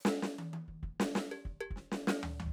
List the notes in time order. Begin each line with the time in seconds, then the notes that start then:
0.03 snare, hi-hat pedal
0.22 snare
0.38 high tom
0.53 high tom
0.68 kick
0.83 kick
1.00 snare
1.15 snare
1.31 percussion
1.45 kick
1.61 percussion
1.71 kick
1.76 snare
1.92 snare
2.07 snare
2.23 floor tom
2.40 floor tom
2.46 kick